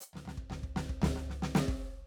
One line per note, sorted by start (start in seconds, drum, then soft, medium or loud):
0.00 hi-hat pedal medium
0.13 snare soft
0.13 floor tom soft
0.25 snare soft
0.25 floor tom soft
0.37 kick soft
0.50 snare soft
0.50 floor tom medium
0.63 kick soft
0.76 snare medium
0.76 floor tom medium
0.89 kick soft
1.02 snare loud
1.02 floor tom loud
1.16 snare soft
1.30 snare soft
1.42 snare medium
1.55 snare loud
1.68 kick medium